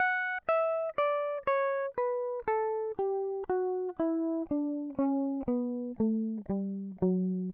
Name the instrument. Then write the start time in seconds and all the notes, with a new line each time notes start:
electric guitar
0.00 F#5
0.49 E5
0.98 D5
1.47 C#5
1.98 B4
2.48 A4
2.99 G4
3.50 F#4
4.00 E4
4.51 D4
4.99 C#4
5.48 B3
6.01 A3
6.39 G#3
6.50 G3
6.93 F#3
7.03 F#3